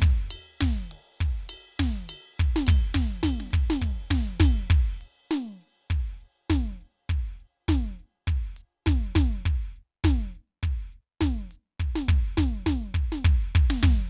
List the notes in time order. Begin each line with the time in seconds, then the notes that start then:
0.01 kick, hi-hat pedal
0.31 ride bell
0.61 kick, snare, hi-hat pedal
0.83 kick
0.92 ride
1.21 kick
1.44 kick
1.50 ride bell
1.80 kick, snare, hi-hat pedal, ride
2.10 ride bell
2.39 kick, hi-hat pedal, ride
2.57 snare
2.68 kick, ride bell
2.95 kick, snare
3.24 kick, snare, ride bell
3.41 snare
3.47 snare
3.51 kick, snare, ride
3.71 snare
3.82 kick, ride
4.11 kick, snare
4.41 kick, snare, ride bell
4.71 kick, hi-hat pedal
5.02 closed hi-hat
5.32 snare
5.62 closed hi-hat
5.91 kick, crash
6.21 closed hi-hat
6.50 kick, snare
6.81 closed hi-hat
7.10 kick
7.40 closed hi-hat
7.69 kick, snare
8.00 closed hi-hat
8.28 kick, ride
8.57 closed hi-hat
8.87 kick, snare
9.16 open hi-hat, kick, snare
9.45 kick, hi-hat pedal
9.76 closed hi-hat
10.05 kick, snare
10.35 closed hi-hat
10.64 kick
10.93 closed hi-hat
11.22 kick, snare
11.52 closed hi-hat
11.80 kick
11.96 snare
12.09 open hi-hat, kick
12.36 kick, snare, hi-hat pedal
12.67 open hi-hat, kick, snare
12.93 kick, hi-hat pedal
13.13 snare
13.25 open hi-hat, kick
13.53 closed hi-hat, kick, hi-hat pedal
13.71 snare
13.84 kick, snare